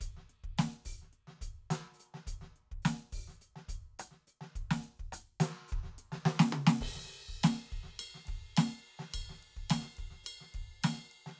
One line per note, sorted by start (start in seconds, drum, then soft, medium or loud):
0.01 closed hi-hat medium
0.01 kick soft
0.17 snare soft
0.25 snare soft
0.30 closed hi-hat soft
0.44 kick soft
0.59 closed hi-hat medium
0.59 snare loud
0.73 snare soft
0.86 open hi-hat medium
0.86 kick soft
1.02 snare soft
1.13 closed hi-hat soft
1.28 snare soft
1.35 snare soft
1.42 closed hi-hat medium
1.42 kick soft
1.71 closed hi-hat loud
1.71 snare loud
1.94 hi-hat pedal soft
2.00 closed hi-hat soft
2.15 snare soft
2.27 closed hi-hat medium
2.27 kick soft
2.33 kick soft
2.42 snare soft
2.57 closed hi-hat soft
2.72 kick soft
2.83 closed hi-hat medium
2.83 snare loud
2.83 hi-hat pedal soft
3.13 open hi-hat medium
3.13 kick soft
3.18 kick soft
3.28 snare soft
3.35 hi-hat pedal soft
3.42 closed hi-hat soft
3.56 snare soft
3.66 closed hi-hat medium
3.66 kick soft
3.66 snare soft
3.75 kick soft
4.00 closed hi-hat medium
4.00 cross-stick medium
4.12 snare soft
4.28 hi-hat pedal soft
4.42 snare soft
4.56 kick soft
4.56 closed hi-hat medium
4.62 kick soft
4.71 snare medium
4.84 closed hi-hat soft
5.00 kick soft
5.13 closed hi-hat medium
5.13 cross-stick medium
5.41 closed hi-hat loud
5.41 snare loud
5.69 open hi-hat medium
5.69 hi-hat pedal soft
5.73 kick medium
5.79 kick soft
5.84 kick soft
5.84 snare soft
5.94 kick soft
5.99 open hi-hat medium
6.13 snare medium
6.26 snare loud
6.39 snare loud
6.39 hi-hat pedal soft
6.53 high tom loud
6.67 snare loud
6.81 kick soft
6.81 crash medium
6.87 kick soft
6.90 kick soft
6.96 snare soft
7.05 snare soft
7.05 closed hi-hat soft
7.29 kick soft
7.44 snare loud
7.44 hi-hat pedal medium
7.44 ride bell loud
7.56 snare soft
7.72 kick soft
7.72 ride soft
7.78 kick soft
7.84 snare soft
8.00 hi-hat pedal medium
8.00 ride bell loud
8.15 snare soft
8.26 kick soft
8.26 snare soft
8.26 ride medium
8.35 kick soft
8.57 snare loud
8.57 hi-hat pedal medium
8.57 ride bell loud
8.87 ride soft
9.00 snare medium
9.11 kick soft
9.11 hi-hat pedal soft
9.11 ride bell loud
9.30 snare soft
9.43 ride soft
9.57 kick soft
9.70 snare loud
9.70 hi-hat pedal medium
9.70 ride bell loud
9.82 snare soft
9.98 kick soft
9.98 ride soft
10.11 snare soft
10.24 hi-hat pedal soft
10.24 ride bell loud
10.41 snare soft
10.51 kick soft
10.51 snare soft
10.51 ride soft
10.60 kick soft
10.83 snare loud
10.83 hi-hat pedal medium
10.83 ride bell loud
10.95 snare soft
11.12 ride soft
11.27 snare soft